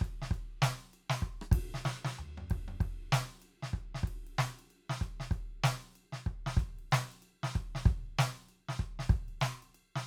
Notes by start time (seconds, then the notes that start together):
0.01 kick, ride
0.22 snare
0.31 kick, ride bell
0.62 snare, hi-hat pedal
0.93 ride bell
1.10 snare
1.22 kick
1.41 cross-stick
1.51 kick, ride
1.74 snare
1.84 snare, hi-hat pedal
2.05 snare
2.11 hi-hat pedal
2.19 floor tom
2.37 mid tom
2.50 kick, ride
2.68 mid tom
2.80 kick, ride
3.12 snare, hi-hat pedal
3.39 hi-hat pedal, ride bell
3.63 snare
3.73 kick
3.94 snare
4.03 kick
4.07 ride
4.27 ride
4.38 snare, hi-hat pedal
4.59 ride bell
4.70 ride bell
4.89 snare
5.01 kick, ride bell
5.20 snare
5.31 kick, ride bell
5.64 snare, hi-hat pedal
5.91 hi-hat pedal
5.95 ride bell
6.12 snare
6.26 kick
6.46 snare
6.57 kick, ride bell
6.79 ride
6.91 snare, hi-hat pedal
7.12 ride bell
7.22 ride bell
7.43 snare
7.55 kick, ride
7.75 snare
7.86 kick, ride bell
8.18 snare, hi-hat pedal
8.49 ride bell
8.69 snare
8.79 kick
8.99 snare
9.09 kick, ride bell
9.28 ride bell
9.41 snare, hi-hat pedal
9.62 ride bell
9.74 ride bell
9.96 snare